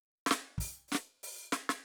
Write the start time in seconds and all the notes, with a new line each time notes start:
0.26 snare
0.31 snare
0.58 open hi-hat, kick
0.88 snare, hi-hat pedal
0.95 snare
1.23 open hi-hat
1.52 snare
1.69 snare